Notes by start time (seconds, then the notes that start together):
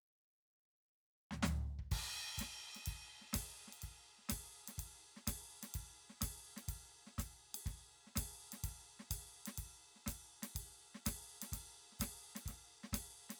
1.31 snare, floor tom
1.43 snare, floor tom, hi-hat pedal
1.79 kick
1.91 kick, crash, ride
2.38 kick, snare, hi-hat pedal, ride
2.75 snare, ride
2.86 kick, ride
3.21 snare
3.33 kick, snare, hi-hat pedal, ride
3.67 snare
3.72 ride
3.82 kick, ride
4.18 snare
4.29 kick, snare, hi-hat pedal, ride
4.68 snare, ride
4.77 kick, hi-hat pedal, ride
5.16 snare
5.27 kick, snare, hi-hat pedal, ride
5.63 snare, ride
5.74 kick, ride
6.09 snare
6.21 kick, snare, hi-hat pedal, ride
6.56 snare, ride
6.67 kick, hi-hat pedal, ride
7.07 snare
7.18 kick, snare, hi-hat pedal, ride
7.54 snare, ride
7.66 kick, snare, ride
8.06 snare
8.15 kick, snare, hi-hat pedal, ride
8.21 snare
8.52 snare, ride
8.63 kick, snare, ride
8.99 snare
9.11 kick, hi-hat pedal, ride
9.46 snare, ride
9.58 kick, ride
9.96 snare
10.06 kick, snare, hi-hat pedal, ride
10.42 snare, ride
10.55 kick, ride
10.94 snare
11.05 kick, snare, hi-hat pedal, ride
11.42 snare, ride
11.52 kick, snare, ride
11.92 snare
11.99 kick, snare, hi-hat pedal, ride
12.35 snare, ride
12.46 kick, snare, ride
12.83 snare
12.93 kick, snare, hi-hat pedal, ride
13.29 snare, ride